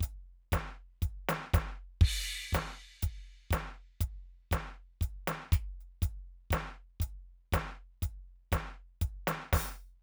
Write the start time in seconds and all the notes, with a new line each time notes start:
0.01 kick, open hi-hat
0.53 kick, snare, open hi-hat
1.02 kick, open hi-hat
1.29 snare, open hi-hat
1.54 kick, snare, open hi-hat
2.02 kick, crash
2.53 kick, snare, open hi-hat
3.03 kick, closed hi-hat
3.51 kick, snare, open hi-hat
4.01 kick, closed hi-hat
4.52 kick, snare, closed hi-hat
5.02 kick, open hi-hat
5.28 snare, open hi-hat
5.53 kick, snare, open hi-hat
5.81 open hi-hat
6.03 kick, open hi-hat
6.51 kick, snare, open hi-hat
7.01 kick, open hi-hat
7.53 kick, snare, open hi-hat
8.03 kick, open hi-hat
8.52 kick, snare, open hi-hat
9.02 kick, open hi-hat
9.28 snare, open hi-hat
9.53 kick, snare, open hi-hat